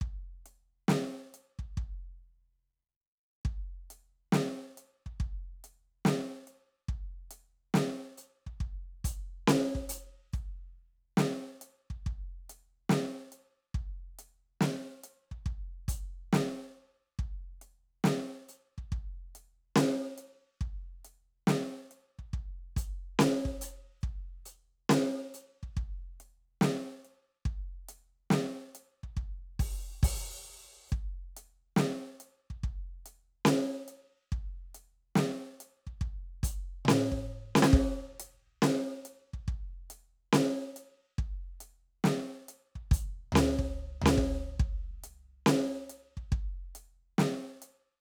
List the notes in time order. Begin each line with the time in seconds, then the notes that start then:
0.01 kick
0.46 closed hi-hat
0.88 snare
1.34 closed hi-hat
1.59 kick
1.77 kick, crash
3.45 kick, snare, crash, ride
3.90 closed hi-hat
4.32 snare
4.77 closed hi-hat
5.06 kick
5.20 kick
5.64 closed hi-hat
6.05 snare
6.47 closed hi-hat
6.88 kick
7.31 closed hi-hat
7.74 snare
8.18 closed hi-hat
8.46 kick
8.60 kick
9.04 closed hi-hat, kick
9.48 snare
9.75 kick
9.89 closed hi-hat
10.33 kick, hi-hat pedal
11.17 snare
11.61 closed hi-hat
11.90 kick
12.06 kick, crash, ride
12.49 closed hi-hat
12.89 snare
13.32 closed hi-hat
13.74 kick
14.19 closed hi-hat
14.61 snare
15.04 closed hi-hat
15.31 kick
15.46 kick
15.88 closed hi-hat, kick
16.33 snare
17.19 kick
17.61 closed hi-hat
18.04 snare
18.49 closed hi-hat
18.78 kick
18.92 kick, crash, ride
19.35 closed hi-hat
19.76 snare
20.18 closed hi-hat
20.61 kick
21.05 closed hi-hat
21.47 snare
21.91 closed hi-hat
22.19 kick
22.33 kick
22.76 closed hi-hat, kick
23.19 snare
23.45 kick
23.61 closed hi-hat, cross-stick
24.01 kick, hi-hat pedal
24.46 closed hi-hat
24.89 snare
25.34 closed hi-hat
25.63 kick
25.77 kick, crash, ride
26.20 closed hi-hat
26.61 snare
27.05 closed hi-hat
27.45 kick, crash
27.89 closed hi-hat
28.30 snare
28.75 closed hi-hat
29.03 kick
29.17 kick, crash
29.59 open hi-hat, kick, cross-stick
30.03 open hi-hat, kick
30.89 kick, hi-hat pedal
30.94 crash
31.37 closed hi-hat
31.76 snare
32.20 closed hi-hat
32.50 kick
32.63 kick, crash, ride
33.06 closed hi-hat
33.45 snare
33.88 closed hi-hat
34.32 kick, snare, crash, ride
34.74 closed hi-hat
35.16 snare
35.60 closed hi-hat
35.87 kick
36.01 kick, crash, ride
36.43 closed hi-hat, kick
36.85 snare, high tom
37.12 kick
37.55 snare
37.62 snare
37.73 kick
38.20 closed hi-hat
38.62 snare
39.05 closed hi-hat
39.33 kick
39.48 kick, snare, crash, ride
39.90 closed hi-hat
40.33 snare
40.76 closed hi-hat
41.18 kick, snare, crash, ride
41.60 closed hi-hat
42.04 snare
42.48 closed hi-hat
42.75 kick
42.91 closed hi-hat, kick, snare
43.32 snare, floor tom
43.59 kick
44.02 floor tom
44.06 snare
44.18 kick
44.59 kick, snare, crash, ride
45.04 closed hi-hat
45.46 snare
45.89 closed hi-hat
46.17 kick
46.32 kick
46.75 closed hi-hat
47.18 snare
47.62 closed hi-hat